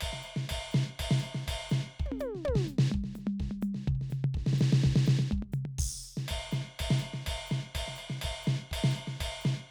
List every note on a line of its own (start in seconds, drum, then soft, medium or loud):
0.01 kick soft
0.01 ride bell loud
0.13 snare soft
0.23 hi-hat pedal medium
0.23 ride soft
0.37 snare medium
0.49 kick soft
0.49 ride bell loud
0.57 kick soft
0.71 snare loud
0.71 hi-hat pedal medium
1.00 kick soft
1.00 ride bell loud
1.06 kick soft
1.11 snare loud
1.19 hi-hat pedal medium
1.23 ride medium
1.35 snare medium
1.48 kick soft
1.48 ride bell loud
1.54 kick soft
1.70 snare loud
1.70 hi-hat pedal medium
2.00 kick medium
2.06 kick soft
2.06 high tom medium
2.12 high tom loud
2.20 hi-hat pedal medium
2.20 high tom loud
2.35 snare soft
2.45 kick soft
2.45 high tom loud
2.55 kick soft
2.55 snare loud
2.67 hi-hat pedal medium
2.67 mid tom soft
2.79 snare loud
2.92 kick soft
2.92 mid tom loud
3.01 kick soft
3.01 snare soft
3.15 snare soft
3.15 hi-hat pedal medium
3.15 mid tom medium
3.27 mid tom loud
3.40 kick soft
3.40 snare medium
3.46 kick soft
3.51 mid tom medium
3.62 hi-hat pedal medium
3.62 mid tom loud
3.75 snare soft
3.88 kick soft
3.88 floor tom loud
3.95 kick soft
4.02 snare soft
4.10 snare soft
4.10 floor tom medium
4.10 hi-hat pedal medium
4.25 floor tom loud
4.35 kick soft
4.35 snare soft
4.41 kick soft
4.47 snare medium
4.53 snare medium
4.58 snare loud
4.58 hi-hat pedal medium
4.73 snare loud
4.84 kick soft
4.84 snare loud
4.96 snare loud
5.06 snare loud
5.06 hi-hat pedal medium
5.19 snare medium
5.32 kick soft
5.32 mid tom loud
5.38 kick soft
5.43 kick soft
5.43 mid tom medium
5.53 floor tom loud
5.53 hi-hat pedal medium
5.66 floor tom medium
5.79 kick medium
5.79 crash loud
5.93 kick soft
6.03 hi-hat pedal medium
6.17 snare medium
6.28 kick soft
6.28 ride bell loud
6.37 kick soft
6.51 snare medium
6.51 hi-hat pedal medium
6.80 kick soft
6.80 ride bell loud
6.87 kick soft
6.91 snare loud
6.99 hi-hat pedal medium
6.99 ride soft
7.14 snare medium
7.27 kick soft
7.27 ride bell loud
7.34 kick soft
7.47 hi-hat pedal medium
7.52 snare medium
7.75 kick soft
7.75 ride bell loud
7.81 kick soft
7.88 snare soft
7.96 hi-hat pedal medium
7.96 ride medium
8.10 snare medium
8.22 kick soft
8.22 ride bell loud
8.30 kick soft
8.43 hi-hat pedal medium
8.48 snare loud
8.72 kick soft
8.72 ride bell loud
8.84 snare loud
8.91 hi-hat pedal medium
8.96 ride medium
9.08 snare medium
9.21 kick soft
9.21 ride bell loud
9.27 kick soft
9.41 hi-hat pedal medium
9.46 snare loud